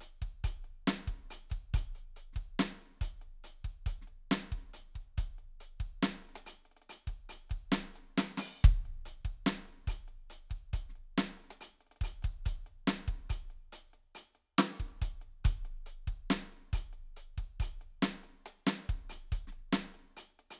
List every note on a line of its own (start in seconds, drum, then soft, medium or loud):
0.01 closed hi-hat medium
0.22 kick soft
0.22 closed hi-hat soft
0.44 closed hi-hat loud
0.44 kick medium
0.64 closed hi-hat soft
0.87 closed hi-hat loud
0.87 snare loud
1.07 kick medium
1.07 closed hi-hat soft
1.30 closed hi-hat loud
1.50 closed hi-hat soft
1.50 kick medium
1.74 closed hi-hat loud
1.74 kick medium
1.95 closed hi-hat soft
2.16 closed hi-hat medium
2.33 kick medium
2.33 snare soft
2.33 closed hi-hat soft
2.59 closed hi-hat loud
2.59 snare loud
2.79 closed hi-hat soft
3.01 closed hi-hat loud
3.01 kick medium
3.21 closed hi-hat soft
3.44 closed hi-hat loud
3.64 kick soft
3.64 closed hi-hat soft
3.86 closed hi-hat medium
3.86 kick medium
4.02 snare soft
4.07 closed hi-hat soft
4.31 closed hi-hat loud
4.31 snare loud
4.52 kick medium
4.52 closed hi-hat soft
4.74 closed hi-hat loud
4.95 kick soft
4.95 closed hi-hat soft
5.18 closed hi-hat medium
5.18 kick medium
5.38 closed hi-hat soft
5.60 closed hi-hat medium
5.80 kick medium
5.80 closed hi-hat soft
6.03 closed hi-hat loud
6.03 snare loud
6.22 closed hi-hat soft
6.29 closed hi-hat soft
6.36 closed hi-hat loud
6.46 closed hi-hat loud
6.65 closed hi-hat soft
6.71 closed hi-hat soft
6.77 closed hi-hat soft
6.82 closed hi-hat soft
6.89 closed hi-hat loud
7.07 kick soft
7.07 closed hi-hat soft
7.29 closed hi-hat loud
7.50 kick medium
7.50 closed hi-hat soft
7.72 closed hi-hat loud
7.72 snare loud
7.96 closed hi-hat medium
8.18 closed hi-hat loud
8.18 snare loud
8.37 open hi-hat loud
8.37 snare medium
8.64 kick loud
8.64 closed hi-hat soft
8.64 hi-hat pedal medium
8.85 closed hi-hat soft
9.05 closed hi-hat loud
9.25 kick medium
9.25 closed hi-hat soft
9.46 closed hi-hat medium
9.46 snare loud
9.65 closed hi-hat soft
9.87 closed hi-hat loud
9.87 kick medium
10.08 closed hi-hat soft
10.30 closed hi-hat loud
10.50 kick soft
10.50 closed hi-hat soft
10.73 closed hi-hat loud
10.73 kick medium
10.89 snare soft
10.95 closed hi-hat soft
11.18 closed hi-hat loud
11.18 snare loud
11.37 closed hi-hat soft
11.44 closed hi-hat soft
11.51 closed hi-hat loud
11.61 closed hi-hat loud
11.74 closed hi-hat soft
11.81 closed hi-hat soft
11.87 closed hi-hat soft
11.91 closed hi-hat soft
11.96 closed hi-hat soft
12.01 closed hi-hat loud
12.01 kick medium
12.22 kick medium
12.22 closed hi-hat soft
12.46 closed hi-hat loud
12.46 kick medium
12.66 closed hi-hat soft
12.87 closed hi-hat loud
12.87 snare loud
13.08 kick medium
13.08 closed hi-hat soft
13.30 closed hi-hat loud
13.30 kick medium
13.50 closed hi-hat soft
13.72 closed hi-hat loud
13.93 closed hi-hat soft
14.15 closed hi-hat loud
14.35 closed hi-hat soft
14.58 closed hi-hat loud
14.58 snare loud
14.79 kick soft
14.79 closed hi-hat soft
15.02 closed hi-hat loud
15.02 kick medium
15.21 closed hi-hat soft
15.44 closed hi-hat loud
15.44 kick medium
15.65 closed hi-hat soft
15.86 closed hi-hat medium
16.07 kick medium
16.07 closed hi-hat soft
16.30 closed hi-hat loud
16.30 snare loud
16.51 closed hi-hat soft
16.73 closed hi-hat loud
16.73 kick medium
16.93 closed hi-hat soft
17.17 closed hi-hat medium
17.38 kick medium
17.38 closed hi-hat soft
17.60 closed hi-hat loud
17.60 kick medium
17.81 closed hi-hat soft
18.02 closed hi-hat loud
18.02 snare loud
18.23 closed hi-hat soft
18.46 closed hi-hat loud
18.67 open hi-hat loud
18.67 snare loud
18.84 hi-hat pedal medium
18.89 kick medium
18.89 closed hi-hat soft
19.10 closed hi-hat loud
19.10 snare soft
19.32 closed hi-hat medium
19.32 kick medium
19.47 snare soft
19.52 closed hi-hat soft
19.73 closed hi-hat loud
19.73 snare loud
19.94 closed hi-hat soft
20.17 closed hi-hat loud
20.30 closed hi-hat soft
20.39 closed hi-hat soft
20.51 closed hi-hat loud